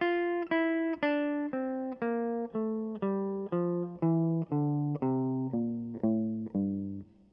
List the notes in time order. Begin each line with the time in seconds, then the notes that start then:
0.02 F4
0.52 E4
1.03 D4
1.54 C4
2.03 A#3
2.56 A3
3.04 G3
3.54 F3
4.04 E3
4.53 D3
5.04 C3
5.55 A#2
6.05 A2
6.57 G2